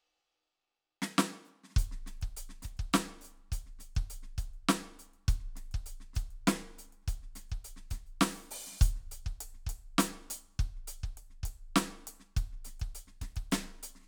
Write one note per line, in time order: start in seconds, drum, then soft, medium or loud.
1.02 snare medium
1.18 snare loud
1.32 snare soft
1.45 hi-hat pedal soft
1.64 snare soft
1.67 snare soft
1.70 snare soft
1.74 closed hi-hat medium
1.74 kick loud
1.74 snare soft
1.91 snare soft
2.06 snare soft
2.06 closed hi-hat soft
2.22 kick medium
2.22 closed hi-hat soft
2.37 closed hi-hat medium
2.49 snare soft
2.62 closed hi-hat medium
2.62 kick soft
2.62 snare soft
2.77 kick medium
2.77 closed hi-hat soft
2.93 closed hi-hat medium
2.93 snare loud
3.21 closed hi-hat soft
3.21 hi-hat pedal soft
3.37 closed hi-hat soft
3.52 closed hi-hat medium
3.52 kick medium
3.66 snare soft
3.79 closed hi-hat soft
3.79 snare soft
3.95 kick medium
3.95 closed hi-hat soft
4.10 closed hi-hat medium
4.23 snare soft
4.38 closed hi-hat medium
4.38 kick medium
4.54 closed hi-hat soft
4.69 closed hi-hat medium
4.69 snare loud
4.99 closed hi-hat soft
5.13 closed hi-hat soft
5.28 closed hi-hat medium
5.28 kick loud
5.39 snare soft
5.56 snare soft
5.56 closed hi-hat soft
5.71 kick medium
5.71 closed hi-hat soft
5.86 closed hi-hat medium
6.00 snare soft
6.13 closed hi-hat soft
6.13 kick medium
6.13 snare soft
6.31 closed hi-hat soft
6.47 closed hi-hat medium
6.47 snare loud
6.55 snare soft
6.79 closed hi-hat soft
6.92 closed hi-hat soft
7.02 snare soft
7.08 closed hi-hat medium
7.08 kick medium
7.22 snare soft
7.35 closed hi-hat medium
7.35 snare soft
7.50 kick medium
7.50 closed hi-hat soft
7.64 closed hi-hat medium
7.76 snare soft
7.91 closed hi-hat soft
7.91 kick medium
7.91 snare soft
8.06 closed hi-hat soft
8.21 open hi-hat medium
8.21 snare loud
8.51 open hi-hat medium
8.67 snare soft
8.71 snare soft
8.73 snare soft
8.79 closed hi-hat loud
8.79 kick loud
8.79 hi-hat pedal soft
8.96 snare soft
9.11 closed hi-hat medium
9.25 kick medium
9.25 snare soft
9.41 closed hi-hat medium
9.54 snare soft
9.67 kick medium
9.67 snare soft
9.67 closed hi-hat medium
9.98 closed hi-hat loud
9.98 snare loud
10.30 closed hi-hat loud
10.59 kick medium
10.59 closed hi-hat soft
10.76 snare soft
10.87 closed hi-hat medium
11.03 kick medium
11.03 snare soft
11.17 closed hi-hat soft
11.30 snare soft
11.43 kick medium
11.43 closed hi-hat medium
11.76 closed hi-hat medium
11.76 snare loud
12.07 closed hi-hat medium
12.20 snare soft
12.37 kick medium
12.37 closed hi-hat medium
12.52 snare soft
12.65 closed hi-hat medium
12.65 snare soft
12.80 kick medium
12.80 closed hi-hat soft
12.95 closed hi-hat medium
13.07 snare soft
13.21 kick soft
13.21 snare soft
13.21 closed hi-hat soft
13.36 kick medium
13.36 closed hi-hat soft
13.52 closed hi-hat medium
13.52 snare loud
13.77 snare soft
13.83 closed hi-hat medium
13.95 snare soft
13.99 snare soft
14.01 snare soft